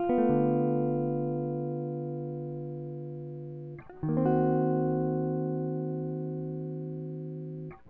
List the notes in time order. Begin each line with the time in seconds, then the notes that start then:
0.00 F4
0.10 B3
0.18 A3
0.30 D3
4.04 D#3
4.09 A#3
4.17 C4
4.26 F#4